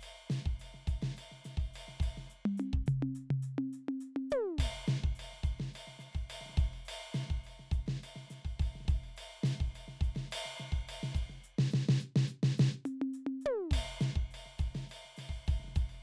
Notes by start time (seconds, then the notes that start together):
0.01 hi-hat pedal, ride bell
0.30 snare, hi-hat pedal, ride
0.46 kick, snare
0.60 hi-hat pedal, ride bell
0.74 snare
0.87 kick, hi-hat pedal, ride
1.02 snare, ride
1.17 hi-hat pedal, ride bell
1.32 snare
1.45 snare, hi-hat pedal, ride
1.57 kick, ride
1.74 hi-hat pedal, ride bell
1.88 snare
2.00 kick, hi-hat pedal, ride
2.18 snare
2.30 hi-hat pedal
2.46 mid tom
2.58 hi-hat pedal, high tom
2.73 kick
2.86 floor tom, hi-hat pedal
3.03 high tom
3.15 hi-hat pedal
3.31 floor tom
3.43 hi-hat pedal
3.58 high tom
3.73 hi-hat pedal
3.89 high tom
4.01 hi-hat pedal
4.16 high tom
4.31 hi-hat pedal, high tom
4.59 kick, hi-hat pedal, ride
4.87 snare, hi-hat pedal
5.03 kick, snare
5.15 hi-hat pedal
5.20 ride
5.33 snare
5.44 kick, hi-hat pedal, ride
5.59 snare, ride
5.74 hi-hat pedal, ride bell
5.88 snare
5.99 snare, hi-hat pedal, ride
6.13 kick, ride
6.30 hi-hat pedal, ride bell
6.41 snare
6.46 snare
6.50 snare
6.53 snare
6.57 kick, hi-hat pedal, ride
6.73 ride
6.85 hi-hat pedal, ride bell
7.14 snare, hi-hat pedal, ride
7.29 kick, snare
7.44 hi-hat pedal, ride
7.60 snare
7.72 kick, hi-hat pedal, ride
7.87 snare, ride
8.03 hi-hat pedal, ride bell
8.16 snare
8.30 snare, hi-hat pedal, ride
8.45 kick, ride
8.60 kick, hi-hat pedal, ride bell
8.76 snare
8.81 snare
8.85 kick, snare, hi-hat pedal
8.91 ride
9.04 ride
9.17 hi-hat pedal, ride bell
9.44 snare, hi-hat pedal, ride
9.60 kick, snare
9.75 hi-hat pedal, ride bell
9.88 snare
10.01 kick, hi-hat pedal, ride
10.15 snare, ride
10.32 hi-hat pedal, ride
10.46 snare
10.58 snare, hi-hat pedal, ride
10.72 kick, ride
10.88 hi-hat pedal, ride bell
11.03 snare
11.15 kick, hi-hat pedal, ride
11.30 snare
11.44 hi-hat pedal
11.59 snare
11.71 snare, hi-hat pedal
11.89 snare
12.00 hi-hat pedal
12.16 snare
12.28 hi-hat pedal
12.43 snare
12.58 snare, hi-hat pedal
12.85 hi-hat pedal, high tom
13.02 high tom
13.14 hi-hat pedal
13.27 high tom
13.41 hi-hat pedal
13.46 high tom
13.71 kick, hi-hat pedal, ride
14.01 snare, hi-hat pedal
14.16 kick, snare
14.31 hi-hat pedal, ride bell
14.46 snare
14.59 kick, hi-hat pedal, ride
14.75 snare, ride
14.89 hi-hat pedal, ride bell
15.05 snare
15.17 snare, hi-hat pedal, ride
15.29 kick, ride
15.47 kick, hi-hat pedal, ride bell
15.60 snare
15.65 snare
15.68 snare
15.71 snare
15.75 kick, hi-hat pedal, ride
15.90 ride